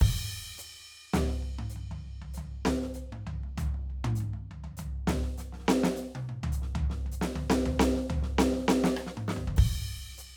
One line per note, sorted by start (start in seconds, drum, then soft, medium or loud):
0.00 kick loud
0.00 crash loud
0.58 hi-hat pedal loud
1.14 snare loud
1.14 floor tom loud
1.14 hi-hat pedal medium
1.28 snare soft
1.42 floor tom soft
1.59 mid tom medium
1.70 hi-hat pedal medium
1.76 floor tom soft
1.91 floor tom medium
2.22 floor tom medium
2.34 floor tom medium
2.34 hi-hat pedal medium
2.65 snare loud
2.65 floor tom loud
2.82 snare soft
2.94 floor tom soft
2.94 hi-hat pedal medium
3.12 mid tom medium
3.27 floor tom medium
3.43 mid tom soft
3.58 floor tom loud
3.58 hi-hat pedal medium
3.74 mid tom soft
3.90 floor tom soft
4.04 mid tom loud
4.15 hi-hat pedal medium
4.20 floor tom medium
4.33 mid tom soft
4.51 floor tom medium
4.64 floor tom medium
4.77 floor tom medium
4.77 hi-hat pedal medium
5.07 snare loud
5.07 floor tom loud
5.23 snare soft
5.38 snare soft
5.38 hi-hat pedal medium
5.53 snare soft
5.58 snare soft
5.63 snare soft
5.68 snare loud
5.83 snare loud
5.96 hi-hat pedal medium
6.01 snare soft
6.15 high tom loud
6.29 mid tom medium
6.43 floor tom loud
6.52 hi-hat pedal medium
6.62 snare soft
6.75 floor tom loud
6.90 snare medium
7.06 floor tom medium
7.12 hi-hat pedal medium
7.21 snare loud
7.36 floor tom loud
7.50 snare loud
7.66 floor tom loud
7.79 snare loud
7.79 hi-hat pedal medium
7.95 snare medium
8.10 floor tom loud
8.22 snare medium
8.38 snare loud
8.38 hi-hat pedal medium
8.52 snare soft
8.59 snare soft
8.68 snare loud
8.84 snare loud
8.96 cross-stick medium
8.96 hi-hat pedal medium
9.06 snare medium
9.17 mid tom loud
9.28 snare loud
9.36 floor tom medium
9.47 kick medium
9.47 floor tom medium
9.56 kick loud
9.56 crash loud
10.18 hi-hat pedal medium